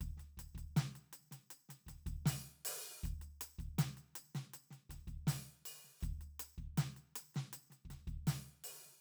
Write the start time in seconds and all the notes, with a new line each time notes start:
0.01 kick, percussion
0.18 snare, percussion
0.38 kick, percussion
0.55 kick, percussion
0.77 snare, percussion
0.95 percussion
1.13 percussion
1.31 snare, percussion
1.51 percussion
1.69 snare, percussion
1.87 kick, snare, percussion
2.06 kick, percussion
2.26 snare, percussion
2.65 percussion
3.04 kick, percussion
3.05 percussion
3.22 percussion
3.41 percussion
3.59 kick, percussion
3.79 snare, percussion
3.97 percussion
4.16 percussion
4.35 snare, percussion
4.54 percussion
4.71 snare, percussion
4.90 kick, snare, percussion
5.08 kick, percussion
5.27 snare, percussion
5.66 percussion
5.85 snare
6.01 kick, percussion
6.04 percussion
6.21 percussion
6.40 percussion
6.58 kick, percussion
6.78 snare, percussion
6.97 percussion
7.16 percussion
7.35 snare, percussion
7.53 percussion
7.70 snare, percussion
7.85 kick
7.90 snare, percussion
8.07 kick, percussion
8.27 snare, percussion
8.64 percussion
8.86 snare